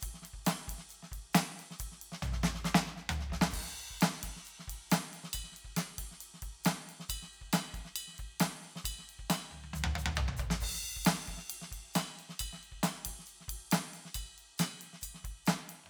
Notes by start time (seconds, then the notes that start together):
0.01 kick, hi-hat pedal, ride
0.10 kick
0.14 snare
0.22 snare, ride
0.34 kick
0.39 kick
0.45 snare, hi-hat pedal, ride
0.68 kick, ride
0.75 kick, snare
0.89 hi-hat pedal, ride
1.03 snare
1.12 kick, ride
1.18 kick
1.33 snare, hi-hat pedal, ride
1.59 ride
1.71 snare
1.79 kick, hi-hat pedal, ride
1.87 kick
1.92 snare
2.02 ride
2.12 snare
2.22 floor tom, hi-hat pedal
2.33 snare
2.44 snare
2.55 snare
2.65 snare, hi-hat pedal
2.75 snare
2.86 snare
2.97 snare
3.07 kick, hi-hat pedal, mid tom
3.20 snare
3.30 kick, snare
3.36 kick
3.42 snare
3.51 kick, hi-hat pedal, crash
3.60 kick
3.64 kick, snare
3.72 snare
3.91 kick
4.01 snare, hi-hat pedal, ride
4.12 snare
4.23 kick, ride
4.30 kick
4.36 snare
4.45 hi-hat pedal, ride
4.59 snare
4.68 kick, ride
4.74 kick
4.90 snare, hi-hat pedal, ride
5.13 ride
5.24 snare
5.33 kick, hi-hat pedal, ride bell
5.41 kick, snare
5.52 snare
5.57 ride
5.65 kick
5.77 snare, hi-hat pedal, ride
5.98 kick, ride
6.04 kick
6.11 snare
6.20 hi-hat pedal, ride
6.34 snare
6.42 kick, ride
6.49 kick
6.64 snare, hi-hat pedal, ride
6.89 ride
7.00 snare
7.09 kick, hi-hat pedal, ride bell
7.16 kick
7.23 snare
7.33 ride
7.42 kick
7.47 kick
7.53 snare, hi-hat pedal, ride bell
7.74 kick, ride
7.80 kick
7.85 snare
7.96 hi-hat pedal, ride bell
8.08 snare
8.13 snare
8.18 kick, ride
8.28 kick
8.40 snare, hi-hat pedal, ride
8.65 ride
8.76 snare
8.85 kick, hi-hat pedal, ride bell
8.91 kick
8.99 snare
9.09 ride
9.19 kick
9.30 snare, hi-hat pedal, ride bell
9.38 snare
9.51 mid tom
9.64 mid tom
9.74 hi-hat pedal, mid tom
9.84 mid tom
9.96 hi-hat pedal, mid tom
10.06 mid tom
10.16 hi-hat pedal, floor tom
10.28 floor tom
10.37 kick, hi-hat pedal, floor tom
10.51 snare
10.60 kick, hi-hat pedal, crash
10.74 snare
10.97 kick
11.05 snare, hi-hat pedal, ride
11.13 snare
11.28 kick, ride
11.34 kick, snare
11.49 hi-hat pedal, ride
11.62 snare
11.69 kick, snare
11.73 ride
11.77 kick
11.94 snare, hi-hat pedal, ride bell
12.19 ride
12.29 snare
12.39 kick, hi-hat pedal, ride bell
12.47 kick
12.53 snare
12.59 snare
12.63 ride
12.72 kick
12.83 snare, hi-hat pedal, ride bell
12.94 snare
13.05 kick, ride
13.12 kick
13.19 snare
13.26 hi-hat pedal, ride
13.41 snare
13.48 kick, ride
13.54 kick
13.71 snare, hi-hat pedal, ride
13.94 ride
14.05 snare
14.15 kick, hi-hat pedal, ride bell
14.22 kick, snare
14.27 snare
14.30 snare
14.38 ride
14.58 snare, hi-hat pedal, ride bell
14.81 ride
14.93 snare
15.01 kick, hi-hat pedal, ride bell
15.15 snare
15.21 kick, snare, ride
15.31 kick
15.45 snare, hi-hat pedal, ride bell
15.69 ride
15.79 cross-stick
15.84 open hi-hat, high tom
15.86 high tom